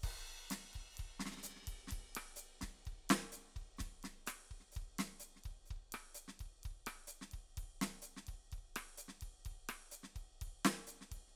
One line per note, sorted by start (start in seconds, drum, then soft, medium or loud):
0.01 kick soft
0.01 hi-hat pedal soft
0.01 crash medium
0.51 snare medium
0.51 hi-hat pedal medium
0.51 ride medium
0.74 kick soft
0.74 ride soft
0.79 kick soft
0.79 snare soft
0.93 hi-hat pedal soft
0.98 kick soft
0.98 ride soft
1.05 kick soft
1.20 snare medium
1.20 ride soft
1.26 snare soft
1.32 snare soft
1.38 snare soft
1.44 snare soft
1.44 hi-hat pedal medium
1.44 ride soft
1.50 snare soft
1.56 snare soft
1.63 snare soft
1.68 kick soft
1.68 ride medium
1.73 kick soft
1.88 snare soft
1.88 ride medium
1.93 kick soft
1.98 kick soft
2.16 cross-stick medium
2.16 ride medium
2.37 hi-hat pedal medium
2.37 ride soft
2.62 kick soft
2.62 snare soft
2.62 ride soft
2.68 kick soft
2.86 kick soft
2.86 ride soft
2.93 kick soft
3.10 snare loud
3.10 ride medium
3.23 snare soft
3.33 hi-hat pedal medium
3.37 snare soft
3.42 snare soft
3.57 kick soft
3.57 ride soft
3.62 kick soft
3.77 kick soft
3.77 snare soft
3.77 hi-hat pedal soft
3.77 ride soft
3.86 kick soft
4.04 snare soft
4.04 ride soft
4.27 cross-stick medium
4.27 hi-hat pedal medium
4.27 ride medium
4.51 kick soft
4.61 snare soft
4.72 hi-hat pedal soft
4.72 ride soft
4.77 kick soft
4.82 kick soft
4.99 snare medium
4.99 ride medium
5.20 hi-hat pedal medium
5.20 ride soft
5.37 snare soft
5.44 kick soft
5.44 ride soft
5.51 kick soft
5.66 hi-hat pedal soft
5.66 ride soft
5.71 kick soft
5.76 kick soft
5.93 cross-stick medium
5.93 ride medium
6.15 hi-hat pedal medium
6.28 snare soft
6.40 kick soft
6.40 ride soft
6.46 kick soft
6.64 kick soft
6.64 ride soft
6.71 kick soft
6.87 cross-stick medium
6.87 ride medium
7.08 hi-hat pedal medium
7.22 snare soft
7.32 kick soft
7.32 ride soft
7.39 kick soft
7.58 kick soft
7.58 ride soft
7.63 kick soft
7.82 snare medium
7.82 ride medium
8.02 hi-hat pedal medium
8.17 snare soft
8.27 kick soft
8.27 ride soft
8.34 kick soft
8.52 kick soft
8.52 ride soft
8.58 kick soft
8.76 cross-stick medium
8.76 ride medium
8.98 hi-hat pedal medium
9.09 snare soft
9.22 kick soft
9.22 ride soft
9.28 kick soft
9.46 kick soft
9.46 ride soft
9.52 kick soft
9.69 cross-stick medium
9.69 ride medium
9.92 hi-hat pedal medium
10.04 snare soft
10.16 kick soft
10.16 ride soft
10.21 kick soft
10.42 kick soft
10.42 ride soft
10.48 kick soft
10.65 snare medium
10.65 ride medium
10.88 hi-hat pedal medium
11.02 snare soft
11.12 kick soft
11.12 ride soft
11.17 kick soft
11.28 snare soft